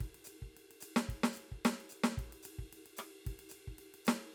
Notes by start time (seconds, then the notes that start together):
0.01 kick, snare, ride
0.15 ride
0.25 hi-hat pedal, ride
0.40 kick, snare
0.44 snare
0.47 snare
0.57 ride
0.72 ride
0.81 hi-hat pedal, ride
0.97 snare
1.09 kick, ride
1.24 snare
1.34 hi-hat pedal
1.38 ride
1.52 kick
1.66 snare, ride
1.73 snare
1.81 ride
1.90 hi-hat pedal, ride
2.04 snare
2.12 snare
2.18 kick, ride
2.30 cross-stick, ride
2.39 cross-stick
2.43 hi-hat pedal, ride
2.59 kick
2.74 snare, ride
2.87 ride
2.97 cross-stick, hi-hat pedal, ride
3.25 kick, snare, ride
3.31 snare
3.35 snare
3.40 ride
3.50 hi-hat pedal, ride
3.68 kick
3.79 ride
3.95 ride
4.06 snare, hi-hat pedal, ride